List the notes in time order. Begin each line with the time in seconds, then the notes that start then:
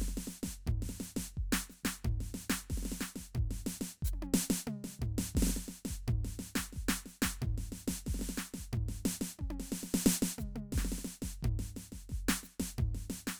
0.01 snare
0.08 snare
0.17 snare
0.29 hi-hat pedal
0.43 kick, snare
0.67 kick, floor tom
0.82 snare
0.89 snare
1.00 snare, hi-hat pedal
1.16 kick, snare
1.37 kick
1.52 snare
1.69 snare, hi-hat pedal
1.84 kick, snare
2.04 kick, floor tom
2.20 snare
2.34 snare
2.39 hi-hat pedal
2.50 kick, snare
2.70 kick, snare
2.77 snare
2.82 snare
2.85 snare
2.92 snare
3.01 snare
3.06 hi-hat pedal
3.16 kick, snare
3.35 kick, floor tom
3.51 snare
3.66 snare, hi-hat pedal
3.81 snare
4.02 kick, hi-hat pedal
4.12 kick, high tom
4.22 high tom
4.34 snare
4.50 snare
4.67 mid tom
4.84 snare
4.99 kick, floor tom
5.18 snare
5.35 kick, snare
5.42 snare
5.49 snare
5.56 snare
5.66 snare, hi-hat pedal
5.85 snare
5.89 kick
6.08 kick, floor tom
6.24 snare
6.39 snare, hi-hat pedal
6.55 kick, snare
6.72 kick, snare
6.88 snare
7.06 snare, hi-hat pedal
7.22 kick, snare
7.42 kick, floor tom
7.58 snare
7.72 snare
7.76 hi-hat pedal
7.88 kick, snare
8.06 kick, snare
8.14 snare
8.19 snare
8.21 snare
8.29 snare
8.37 snare
8.44 hi-hat pedal
8.54 snare
8.58 kick
8.73 floor tom
8.77 kick
8.88 snare
9.05 snare, hi-hat pedal
9.21 snare
9.39 kick, high tom
9.50 high tom
9.60 snare
9.72 snare
9.82 snare, hi-hat pedal
9.94 snare
10.06 snare
10.11 hi-hat pedal
10.22 snare
10.38 kick, hi-hat pedal, mid tom
10.56 mid tom
10.72 kick, snare
10.78 snare
10.82 snare
10.85 snare
10.92 snare
10.98 snare
11.04 snare, hi-hat pedal
11.22 kick, snare
11.43 kick, floor tom
11.59 snare
11.75 snare, hi-hat pedal
11.92 kick, snare
12.09 kick, snare
12.28 snare
12.43 snare, hi-hat pedal
12.59 kick, snare
12.78 kick, floor tom
12.95 snare
13.10 snare, hi-hat pedal
13.27 snare